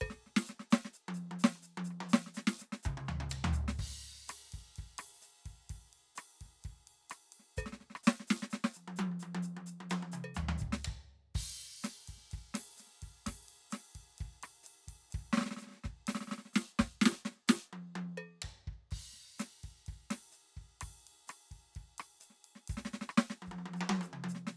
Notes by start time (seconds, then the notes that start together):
0.01 kick, percussion
0.07 kick, snare
0.26 snare
0.36 snare
0.45 snare, hi-hat pedal
0.59 snare
0.70 snare, hi-hat pedal
0.85 snare
0.93 hi-hat pedal
1.08 high tom
1.14 hi-hat pedal
1.31 high tom
1.39 hi-hat pedal
1.44 snare
1.55 high tom
1.62 hi-hat pedal
1.77 high tom
1.84 hi-hat pedal
1.91 cross-stick
2.00 high tom
2.09 hi-hat pedal
2.13 snare
2.26 snare
2.34 snare, hi-hat pedal
2.47 snare
2.58 snare, hi-hat pedal
2.72 snare
2.83 kick, hi-hat pedal, mid tom
2.97 mid tom
3.04 kick, hi-hat pedal
3.08 floor tom
3.20 mid tom
3.29 hi-hat pedal, floor tom
3.44 floor tom
3.53 hi-hat pedal
3.68 snare
3.77 kick, hi-hat pedal, crash
3.86 kick
3.91 snare
4.28 cross-stick, hi-hat pedal, ride
4.52 kick, ride
4.57 kick, snare
4.62 snare
4.75 kick, hi-hat pedal, ride
4.84 kick
4.98 cross-stick, ride
5.22 hi-hat pedal, ride
5.45 kick, ride
5.51 kick
5.69 kick, hi-hat pedal, ride
5.75 kick
5.93 ride
6.15 cross-stick, hi-hat pedal, ride
6.41 kick, snare, ride
6.62 kick, hi-hat pedal, ride
6.87 ride
7.10 cross-stick, hi-hat pedal, ride
7.32 ride
7.39 snare
7.57 kick, hi-hat pedal, percussion
7.64 kick, snare
7.72 snare
7.80 snare
7.90 snare
7.95 cross-stick
8.03 snare, hi-hat pedal
8.20 snare
8.27 snare, hi-hat pedal
8.42 snare
8.50 snare, hi-hat pedal
8.64 snare
8.73 hi-hat pedal, high tom
8.88 high tom
8.96 hi-hat pedal, high tom
9.12 high tom
9.19 hi-hat pedal, high tom
9.35 high tom
9.42 hi-hat pedal
9.57 high tom
9.66 hi-hat pedal
9.80 high tom
9.90 hi-hat pedal, high tom
10.02 high tom
10.12 hi-hat pedal, mid tom
10.24 percussion
10.34 floor tom, hi-hat pedal
10.38 kick
10.44 kick
10.49 floor tom
10.58 kick, hi-hat pedal
10.68 kick
10.72 snare
10.84 kick, hi-hat pedal, floor tom
11.34 kick, hi-hat pedal, crash
11.43 kick
11.83 snare, hi-hat pedal, ride
12.08 kick, ride
12.14 kick, snare
12.30 kick, hi-hat pedal, ride
12.39 kick
12.54 snare, ride
12.77 snare, hi-hat pedal, ride
12.87 snare
13.02 kick, ride
13.08 kick
13.24 kick, snare, hi-hat pedal, ride
13.32 kick
13.48 ride
13.70 snare, hi-hat pedal, ride
13.95 kick, ride
14.18 kick, hi-hat pedal, ride
14.26 kick
14.43 cross-stick, ride
14.63 hi-hat pedal, ride
14.88 kick, ride
15.10 kick, hi-hat pedal, ride
15.20 kick
15.33 snare
15.37 snare
15.41 snare
15.46 snare
15.51 snare
15.56 snare, hi-hat pedal
15.62 snare
15.67 snare
15.70 snare
15.73 snare
15.75 snare
15.84 kick, snare
16.07 snare, ride
16.15 snare
16.21 snare
16.27 snare
16.31 snare
16.38 snare
16.45 snare
16.53 snare, hi-hat pedal
16.55 snare
16.79 kick, snare
17.00 snare, hi-hat pedal
17.06 snare
17.12 snare
17.25 snare
17.31 snare
17.36 snare
17.48 snare, hi-hat pedal
17.73 high tom
17.95 high tom
18.17 percussion
18.42 kick, floor tom
18.67 kick
18.73 kick
18.91 kick, crash
18.98 kick
19.13 snare
19.38 snare, hi-hat pedal, ride
19.63 kick, snare, ride
19.86 kick, ride
19.93 kick
20.10 snare, ride
20.32 hi-hat pedal
20.57 kick
20.62 kick
20.80 kick, cross-stick, hi-hat pedal, ride
20.88 kick
21.07 ride
21.27 cross-stick, hi-hat pedal, ride
21.51 kick, ride
21.73 kick, hi-hat pedal, ride
21.98 cross-stick, ride
22.20 hi-hat pedal, ride
22.30 snare
22.44 ride
22.55 snare
22.68 kick, hi-hat pedal, ride
22.75 kick, snare
22.85 snare
22.93 snare
23.01 snare
23.09 cross-stick
23.18 snare
23.30 snare
23.42 hi-hat pedal, high tom
23.47 kick, high tom
23.58 high tom
23.66 high tom
23.74 hi-hat pedal, high tom
23.81 high tom
23.89 high tom
24.01 hi-hat pedal, high tom
24.13 mid tom
24.24 high tom
24.29 hi-hat pedal
24.35 snare
24.47 snare